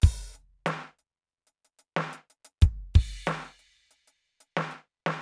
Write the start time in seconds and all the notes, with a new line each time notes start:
0.02 open hi-hat, kick
0.33 hi-hat pedal
0.66 closed hi-hat, snare
0.99 closed hi-hat
1.29 closed hi-hat
1.47 closed hi-hat
1.65 closed hi-hat
1.79 closed hi-hat
1.96 snare
2.13 closed hi-hat
2.30 closed hi-hat
2.45 closed hi-hat
2.61 open hi-hat, kick
2.94 kick, hi-hat pedal, crash
3.26 closed hi-hat, snare
3.59 closed hi-hat
3.91 closed hi-hat
4.07 closed hi-hat
4.25 closed hi-hat
4.40 closed hi-hat
4.57 snare
4.71 closed hi-hat
5.06 snare